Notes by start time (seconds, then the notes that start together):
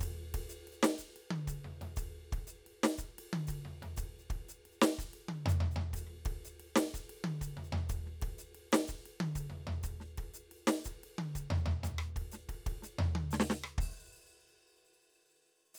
0.01 kick, hi-hat pedal, ride
0.34 kick, ride
0.50 hi-hat pedal
0.68 ride
0.72 hi-hat pedal
0.83 snare
0.98 kick, hi-hat pedal
1.16 ride
1.31 high tom
1.48 kick, hi-hat pedal, ride
1.65 floor tom
1.81 floor tom, ride
1.97 kick, hi-hat pedal, ride
2.33 kick, ride
2.47 hi-hat pedal
2.67 ride
2.84 snare, ride
2.98 kick, hi-hat pedal
3.19 ride
3.33 high tom
3.48 kick, hi-hat pedal, ride
3.65 floor tom
3.83 floor tom, ride
3.97 kick, hi-hat pedal, ride
4.19 hi-hat pedal
4.30 kick, ride
4.49 hi-hat pedal
4.66 ride
4.72 hi-hat pedal
4.82 snare, ride
4.99 kick, hi-hat pedal
5.14 ride
5.29 high tom
5.46 floor tom, hi-hat pedal
5.61 floor tom
5.71 hi-hat pedal
5.76 floor tom
5.94 kick, hi-hat pedal, ride
6.07 cross-stick
6.26 kick, ride
6.45 hi-hat pedal
6.60 ride
6.68 hi-hat pedal
6.76 snare, ride
6.94 kick, hi-hat pedal
7.10 ride
7.16 hi-hat pedal
7.24 high tom
7.41 kick, hi-hat pedal, ride
7.57 floor tom
7.64 hi-hat pedal
7.73 floor tom
7.89 kick, hi-hat pedal, ride
8.06 snare
8.22 kick, ride
8.39 hi-hat pedal
8.55 ride
8.73 snare, ride
8.88 kick, hi-hat pedal
9.06 ride
9.21 high tom
9.36 kick, hi-hat pedal, ride
9.50 floor tom
9.67 floor tom
9.83 kick, hi-hat pedal, ride
10.01 snare
10.18 kick, ride
10.34 hi-hat pedal
10.52 ride
10.57 hi-hat pedal
10.68 snare, ride
10.85 kick, hi-hat pedal
11.04 hi-hat pedal, ride
11.19 high tom
11.35 kick, hi-hat pedal
11.51 floor tom
11.57 hi-hat pedal
11.66 floor tom
11.84 floor tom, hi-hat pedal
11.99 cross-stick
12.16 kick, ride
12.32 snare, hi-hat pedal
12.49 kick, ride
12.67 kick, ride
12.83 snare, hi-hat pedal
12.99 floor tom
13.15 high tom
13.31 snare, hi-hat pedal
13.40 snare
13.50 snare
13.64 cross-stick
13.78 open hi-hat, kick
15.75 hi-hat pedal